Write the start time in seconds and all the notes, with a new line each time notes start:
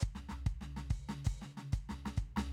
0.00 kick, hi-hat pedal
0.15 snare, floor tom
0.29 snare, floor tom
0.46 kick, hi-hat pedal
0.61 snare, high tom
0.76 snare, high tom
0.90 kick, hi-hat pedal
1.09 snare, high tom
1.25 kick, hi-hat pedal
1.41 snare, high tom
1.57 snare, high tom
1.72 kick, hi-hat pedal
1.89 snare, floor tom
2.05 snare, floor tom
2.17 kick, hi-hat pedal
2.36 snare, floor tom